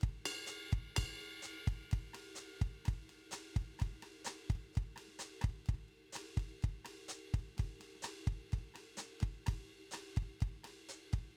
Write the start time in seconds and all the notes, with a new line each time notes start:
0.01 kick, hi-hat pedal, ride
0.09 kick
0.25 snare, ride bell
0.47 hi-hat pedal, ride
0.73 kick, ride
0.78 kick
0.96 kick, cross-stick, snare, ride bell
1.04 kick
1.21 ride
1.43 hi-hat pedal, ride
1.68 kick, ride
1.73 kick
1.92 kick, ride
1.99 kick
2.13 cross-stick, snare, ride
2.36 hi-hat pedal, ride
2.62 kick, ride
2.67 kick
2.86 kick, cross-stick, ride
2.94 kick
3.10 ride
3.31 cross-stick, snare, hi-hat pedal, ride
3.56 kick, ride
3.62 kick
3.79 kick, cross-stick, snare, hi-hat pedal, ride
3.87 kick
3.93 snare
4.03 cross-stick, ride
4.25 cross-stick, hi-hat pedal, ride
4.50 kick, ride
4.55 kick
4.73 hi-hat pedal, ride
4.77 kick
4.83 kick
4.96 cross-stick, ride
5.08 snare
5.19 cross-stick, hi-hat pedal, ride
5.42 kick, cross-stick, ride
5.50 kick
5.66 kick, ride
5.71 kick, snare
5.89 ride
6.13 cross-stick, hi-hat pedal
6.17 ride
6.38 kick, ride
6.63 kick, ride
6.69 kick
6.85 cross-stick, ride
7.09 hi-hat pedal, ride
7.34 kick, ride
7.39 kick
7.57 kick, snare, ride
7.65 kick
7.80 snare, ride
7.95 snare
8.03 cross-stick, hi-hat pedal, ride
8.28 kick, ride
8.32 kick
8.53 kick, ride
8.58 kick
8.74 cross-stick, ride
8.97 cross-stick, snare, hi-hat pedal, ride
9.21 kick, snare, ride
9.47 kick, cross-stick, ride
9.53 kick
9.69 ride
9.92 cross-stick, hi-hat pedal, ride
10.17 kick, ride
10.22 kick
10.41 kick, ride
10.48 kick
10.64 cross-stick, ride
10.89 hi-hat pedal, ride
11.13 kick, ride
11.19 kick